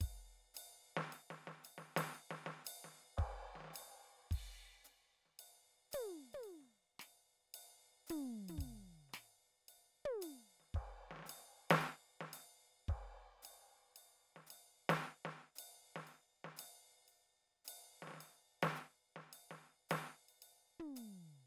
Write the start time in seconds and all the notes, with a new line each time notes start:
0.01 kick, ride
0.54 hi-hat pedal, ride
0.97 snare
1.13 ride
1.31 snare
1.48 snare
1.64 hi-hat pedal, ride
1.78 snare
1.97 snare, ride
2.15 ride
2.31 snare
2.47 snare
2.65 hi-hat pedal, ride
2.85 snare
3.17 kick, crash
3.56 snare
3.61 snare
3.65 snare
3.68 snare
3.74 snare, hi-hat pedal, ride
4.31 kick, ride, crash
4.85 hi-hat pedal, ride
5.26 snare
5.39 ride
5.92 hi-hat pedal, high tom, ride
6.33 high tom, ride
6.44 ride
6.61 snare
7.00 snare, hi-hat pedal, ride
7.54 ride
8.07 floor tom, hi-hat pedal, ride
8.49 floor tom, ride
8.58 kick, ride
9.10 snare, hi-hat pedal
9.14 snare, ride
9.69 ride
10.05 high tom
10.22 hi-hat pedal, ride
10.60 snare
10.75 kick, crash
11.11 snare
11.16 snare
11.19 snare
11.23 snare
11.26 snare, hi-hat pedal, ride
11.70 snare, ride
11.81 ride
12.21 snare
12.33 hi-hat pedal, ride
12.89 kick, crash
13.43 hi-hat pedal, ride
13.96 ride
14.36 snare
14.47 hi-hat pedal, ride
14.90 snare, ride
15.25 snare
15.56 hi-hat pedal, ride
15.96 snare
16.07 ride
16.45 snare
16.57 hi-hat pedal, ride
17.08 ride
17.65 hi-hat pedal, ride
18.03 snare
18.08 snare
18.11 snare
18.14 snare
18.17 snare
18.21 ride
18.63 snare, ride
18.72 snare
18.76 hi-hat pedal, ride
19.16 snare
19.33 ride
19.51 snare
19.89 snare, hi-hat pedal, ride
20.29 ride
20.42 ride
20.79 floor tom
20.96 hi-hat pedal, ride